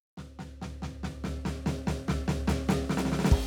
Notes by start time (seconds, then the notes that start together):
0.17 snare, floor tom
0.39 snare, floor tom
0.62 snare, floor tom
0.82 snare, floor tom
1.03 snare, floor tom
1.24 snare, floor tom
1.45 snare, floor tom
1.66 snare, floor tom
1.87 snare, floor tom
2.08 snare, floor tom
2.28 snare, floor tom
2.47 snare, floor tom
2.69 snare, floor tom
2.89 snare
2.97 snare
3.05 snare
3.12 snare
3.19 snare
3.24 snare
3.31 kick, crash